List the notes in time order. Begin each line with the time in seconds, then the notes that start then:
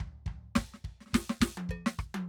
0.00 kick, floor tom
0.26 kick, floor tom
0.55 kick, snare, floor tom
0.74 snare
0.84 kick, floor tom
1.00 snare
1.06 snare
1.10 kick, snare
1.14 snare
1.29 snare
1.40 kick, snare
1.57 high tom
1.69 kick, percussion
1.86 snare
1.98 kick, cross-stick
2.14 high tom